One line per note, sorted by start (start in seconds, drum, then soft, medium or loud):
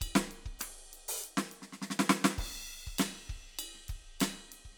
0.01 kick soft
0.01 ride bell loud
0.07 kick soft
0.15 snare loud
0.24 snare soft
0.31 ride soft
0.46 kick soft
0.52 kick soft
0.59 cross-stick medium
0.59 hi-hat pedal medium
0.59 ride loud
0.93 ride medium
1.08 open hi-hat loud
1.24 ride medium
1.37 snare medium
1.48 hi-hat pedal soft
1.48 ride medium
1.62 snare soft
1.73 snare soft
1.82 snare medium
1.90 snare medium
1.99 snare loud
2.09 snare loud
2.24 snare loud
2.31 cross-stick medium
2.38 kick medium
2.38 crash medium
2.65 hi-hat pedal soft
2.87 kick soft
2.98 snare loud
2.98 hi-hat pedal medium
2.98 ride bell loud
3.27 kick soft
3.27 ride soft
3.36 kick soft
3.36 snare soft
3.43 snare soft
3.59 hi-hat pedal soft
3.59 ride bell loud
3.74 snare soft
3.77 snare soft
3.88 kick soft
3.88 ride medium
3.96 kick soft
4.20 snare loud
4.20 hi-hat pedal medium
4.20 ride bell loud
4.52 ride medium
4.65 kick soft
4.72 snare soft